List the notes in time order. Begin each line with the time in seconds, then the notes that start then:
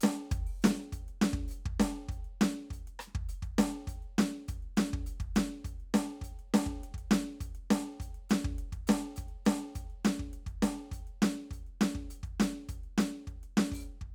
0.01 closed hi-hat, snare
0.31 closed hi-hat, kick, snare
0.47 open hi-hat
0.62 closed hi-hat, snare, hi-hat pedal
0.80 cross-stick
0.93 closed hi-hat, kick
1.08 closed hi-hat
1.22 closed hi-hat, snare
1.33 kick
1.48 closed hi-hat, hi-hat pedal
1.66 kick
1.80 closed hi-hat, snare
2.09 closed hi-hat, kick
2.25 closed hi-hat
2.41 closed hi-hat, snare
2.71 closed hi-hat, kick
2.87 closed hi-hat
2.99 closed hi-hat, cross-stick
3.07 snare
3.15 kick
3.29 closed hi-hat
3.43 kick, closed hi-hat
3.58 closed hi-hat, snare
3.67 snare
3.87 closed hi-hat, kick
4.02 closed hi-hat
4.18 closed hi-hat, snare
4.48 closed hi-hat, kick
4.63 closed hi-hat
4.77 closed hi-hat, snare
4.87 snare
4.93 kick
5.06 closed hi-hat
5.20 kick, closed hi-hat
5.36 closed hi-hat, snare
5.65 closed hi-hat, kick
5.80 closed hi-hat
5.94 closed hi-hat, snare
6.22 closed hi-hat, kick
6.39 closed hi-hat
6.54 closed hi-hat, snare
6.62 snare
6.66 kick
6.80 snare, closed hi-hat
6.94 kick, closed hi-hat
7.11 closed hi-hat, snare
7.41 closed hi-hat, kick
7.55 closed hi-hat
7.71 closed hi-hat, snare
8.00 closed hi-hat, kick
8.15 closed hi-hat
8.30 closed hi-hat, snare
8.45 kick
8.58 closed hi-hat
8.73 kick, closed hi-hat
8.87 closed hi-hat, snare
9.16 closed hi-hat, kick
9.29 closed hi-hat
9.46 closed hi-hat, snare
9.75 closed hi-hat, kick
9.80 snare
9.90 closed hi-hat
10.05 closed hi-hat, snare
10.19 kick
10.33 closed hi-hat
10.47 kick, closed hi-hat
10.63 closed hi-hat, snare
10.92 closed hi-hat, kick
11.07 closed hi-hat
11.22 closed hi-hat, snare
11.36 snare
11.51 closed hi-hat, kick, snare
11.67 closed hi-hat
11.81 closed hi-hat, snare
11.95 kick
12.10 closed hi-hat
12.23 kick, closed hi-hat
12.40 closed hi-hat, snare
12.53 snare
12.69 closed hi-hat, kick
12.84 closed hi-hat
12.98 closed hi-hat, snare
13.27 kick, closed hi-hat
13.43 closed hi-hat
13.57 snare
13.70 open hi-hat, kick, snare
13.80 hi-hat pedal
14.01 kick